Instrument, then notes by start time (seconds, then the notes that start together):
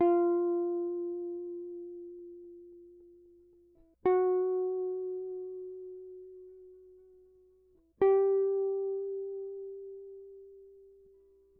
electric guitar
0.00 F4
4.05 F#4
8.02 G4